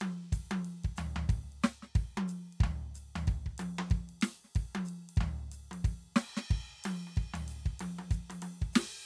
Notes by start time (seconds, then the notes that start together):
0.01 high tom, ride
0.33 kick, hi-hat pedal, ride
0.51 high tom
0.65 ride
0.84 kick, ride
0.96 floor tom, hi-hat pedal, ride
1.16 floor tom
1.29 kick, ride
1.52 ride
1.62 snare, hi-hat pedal, ride
1.83 snare
1.96 kick, ride
2.17 high tom
2.28 hi-hat pedal, ride
2.53 ride
2.61 kick, floor tom, ride
2.95 kick, hi-hat pedal, ride
3.16 floor tom, ride
3.28 kick, ride
3.46 kick
3.58 hi-hat pedal, high tom, ride
3.79 high tom
3.91 kick, ride
4.09 ride
4.22 snare, hi-hat pedal, ride
4.44 snare
4.55 kick, ride
4.75 high tom
4.85 hi-hat pedal, ride
5.09 ride
5.17 kick, ride
5.21 floor tom
5.51 kick, hi-hat pedal, ride
5.71 high tom, ride
5.85 kick, ride
6.16 snare, hi-hat pedal, ride
6.37 snare
6.51 kick, ride
6.84 hi-hat pedal, high tom, ride
7.07 high tom
7.17 kick, ride
7.21 hi-hat pedal
7.34 floor tom, ride
7.48 hi-hat pedal, ride
7.66 kick
7.80 high tom, ride
7.99 high tom
8.11 kick, hi-hat pedal, ride
8.30 high tom, ride
8.42 high tom, ride
8.62 kick
8.73 snare, hi-hat pedal, crash